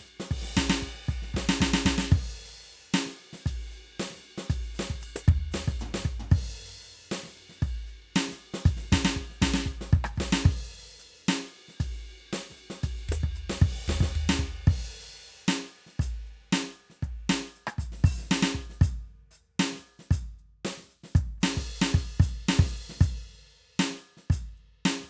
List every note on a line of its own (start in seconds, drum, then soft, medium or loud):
0.01 kick soft
0.01 hi-hat pedal medium
0.07 ride soft
0.20 snare loud
0.31 kick medium
0.31 ride loud
0.43 snare medium
0.51 snare soft
0.57 kick medium
0.57 snare loud
0.57 hi-hat pedal medium
0.70 snare loud
0.83 kick soft
0.83 snare soft
0.95 snare soft
1.00 snare soft
1.02 snare soft
1.05 snare soft
1.05 ride medium
1.09 kick medium
1.09 hi-hat pedal medium
1.23 snare soft
1.27 snare soft
1.34 kick medium
1.34 snare loud
1.34 hi-hat pedal soft
1.49 snare loud
1.60 kick medium
1.60 snare loud
1.60 hi-hat pedal medium
1.74 snare loud
1.86 kick medium
1.86 snare loud
1.98 snare loud
2.11 kick loud
2.11 hi-hat pedal medium
2.11 crash loud
2.63 hi-hat pedal medium
2.63 ride soft
2.94 snare loud
2.94 ride loud
3.07 snare medium
3.18 hi-hat pedal soft
3.18 ride soft
3.33 snare medium
3.46 kick medium
3.46 ride loud
3.72 hi-hat pedal medium
3.72 ride soft
4.00 snare loud
4.00 ride loud
4.11 snare soft
4.14 kick soft
4.14 snare soft
4.17 snare soft
4.20 snare soft
4.20 hi-hat pedal medium
4.25 ride soft
4.38 snare loud
4.50 kick loud
4.50 ride loud
4.75 hi-hat pedal medium
4.75 ride bell medium
4.80 snare loud
4.90 kick medium
4.90 snare soft
5.01 hi-hat pedal medium
5.01 ride bell loud
5.16 high tom loud
5.28 kick loud
5.28 mid tom loud
5.52 snare loud
5.52 hi-hat pedal medium
5.52 ride bell loud
5.68 kick medium
5.68 snare medium
5.79 floor tom loud
5.79 hi-hat pedal medium
5.95 snare loud
6.05 kick medium
6.20 floor tom loud
6.31 kick loud
6.31 hi-hat pedal medium
6.31 crash loud
6.83 hi-hat pedal medium
6.83 ride soft
7.12 snare loud
7.12 ride loud
7.24 snare medium
7.27 kick soft
7.27 snare soft
7.36 hi-hat pedal medium
7.36 ride soft
7.50 snare soft
7.63 kick loud
7.63 ride bell medium
7.87 hi-hat pedal soft
7.87 ride soft
8.16 snare loud
8.16 ride loud
8.29 kick soft
8.29 snare medium
8.32 snare medium
8.36 snare soft
8.36 hi-hat pedal soft
8.41 ride soft
8.54 snare loud
8.66 kick loud
8.66 hi-hat pedal medium
8.66 ride loud
8.77 snare medium
8.83 snare soft
8.88 snare soft
8.92 kick loud
8.92 snare loud
8.92 hi-hat pedal soft
9.05 snare loud
9.15 kick medium
9.15 hi-hat pedal soft
9.30 snare soft
9.41 kick loud
9.41 snare loud
9.41 hi-hat pedal medium
9.54 snare loud
9.66 kick medium
9.66 snare soft
9.81 snare medium
9.92 kick loud
9.92 hi-hat pedal medium
10.05 cross-stick medium
10.16 kick medium
10.16 hi-hat pedal soft
10.21 snare loud
10.33 snare loud
10.46 kick loud
10.46 crash loud
10.99 hi-hat pedal medium
10.99 ride medium
11.29 snare loud
11.29 ride loud
11.52 hi-hat pedal soft
11.52 ride soft
11.69 snare soft
11.81 kick medium
11.81 ride loud
12.05 hi-hat pedal soft
12.05 ride soft
12.33 snare loud
12.33 ride loud
12.51 kick soft
12.51 snare soft
12.57 hi-hat pedal medium
12.57 ride soft
12.70 snare medium
12.84 kick medium
12.84 ride loud
13.09 hi-hat pedal medium
13.09 mid tom loud
13.09 high tom loud
13.24 kick medium
13.35 hi-hat pedal medium
13.35 ride soft
13.35 floor tom soft
13.50 snare loud
13.62 kick loud
13.62 ride loud
13.86 snare loud
13.86 hi-hat pedal medium
13.86 mid tom loud
14.01 kick loud
14.01 snare loud
14.13 hi-hat pedal soft
14.13 mid tom loud
14.30 snare loud
14.38 kick medium
14.38 hi-hat pedal soft
14.65 kick loud
14.65 hi-hat pedal soft
14.65 crash loud
15.49 closed hi-hat loud
15.49 snare loud
15.63 snare soft
15.66 snare soft
15.76 closed hi-hat soft
15.87 snare soft
16.00 closed hi-hat loud
16.00 kick loud
16.27 closed hi-hat soft
16.53 closed hi-hat loud
16.53 snare loud
16.64 snare soft
16.66 snare soft
16.79 closed hi-hat soft
16.90 snare soft
17.03 kick medium
17.03 closed hi-hat medium
17.30 closed hi-hat loud
17.30 snare loud
17.42 snare soft
17.55 closed hi-hat medium
17.67 cross-stick medium
17.79 closed hi-hat loud
17.79 kick medium
17.92 snare soft
17.98 snare soft
18.02 open hi-hat loud
18.02 kick loud
18.02 snare soft
18.18 snare soft
18.22 snare soft
18.24 snare soft
18.26 snare soft
18.31 snare loud
18.31 hi-hat pedal medium
18.43 snare loud
18.55 kick medium
18.70 snare soft
18.82 closed hi-hat loud
18.82 kick loud
19.31 closed hi-hat medium
19.31 hi-hat pedal medium
19.60 closed hi-hat loud
19.60 snare loud
19.73 snare soft
19.75 snare soft
19.79 kick soft
19.86 closed hi-hat soft
20.00 snare soft
20.11 closed hi-hat loud
20.11 kick loud
20.39 closed hi-hat soft
20.65 closed hi-hat loud
20.65 snare loud
20.78 snare soft
20.81 kick soft
20.81 snare soft
20.86 closed hi-hat soft
20.86 snare soft
21.04 snare medium
21.16 kick loud
21.16 closed hi-hat loud
21.38 kick soft
21.38 hi-hat pedal soft
21.42 snare loud
21.42 crash loud
21.57 kick medium
21.57 snare medium
21.67 snare soft
21.82 snare loud
21.95 closed hi-hat medium
21.95 kick loud
22.20 closed hi-hat loud
22.20 kick loud
22.27 snare soft
22.45 snare loud
22.45 hi-hat pedal soft
22.45 crash loud
22.59 kick loud
22.59 snare medium
22.65 snare medium
22.72 snare soft
22.90 snare medium
22.98 closed hi-hat loud
22.98 kick loud
22.98 snare soft
23.50 closed hi-hat soft
23.80 closed hi-hat loud
23.80 snare loud
23.91 snare soft
23.95 snare soft
24.00 snare soft
24.17 snare soft
24.30 closed hi-hat loud
24.30 kick loud
24.57 closed hi-hat soft
24.86 closed hi-hat loud
24.86 snare loud
25.01 kick soft
25.01 snare soft
25.06 snare soft